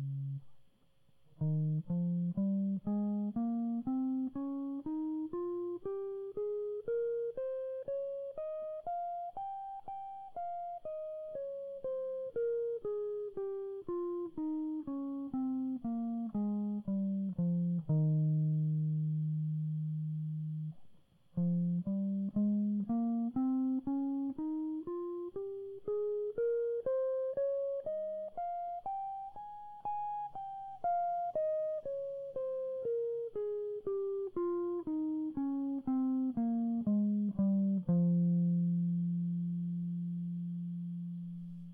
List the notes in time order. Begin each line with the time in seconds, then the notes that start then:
1.42 D#3
1.90 F3
2.38 G3
2.87 G#3
3.36 A#3
3.87 C4
4.36 C#4
4.86 D#4
5.33 F4
5.86 G4
6.37 G#4
6.88 A#4
7.37 C5
7.88 C#5
8.38 D#5
8.87 F5
9.37 G5
9.88 G5
10.36 F5
10.85 D#5
11.35 C#5
11.84 C5
12.36 A#4
12.85 G#4
13.37 G4
13.89 F4
14.38 D#4
14.88 C#4
15.34 C4
15.85 A#3
16.35 G#3
16.88 G3
17.39 F3
17.90 D#3
21.38 F3
21.88 G3
22.37 G#3
22.90 A#3
23.36 C4
23.87 C#4
24.39 D#4
24.87 F4
25.36 G4
25.88 G#4
26.38 A#4
26.86 C5
27.37 C#5
27.86 D#5
28.37 F5
28.86 G5
29.36 G#5
29.85 G#5
30.35 G5
30.84 F5
31.36 D#5
31.86 C#5
32.36 C5
32.85 A#4
33.36 G#4
33.87 G4
34.36 F4
34.87 D#4
35.37 C#4
35.88 C4
36.37 A#3
36.87 G#3
37.39 G3
37.89 F3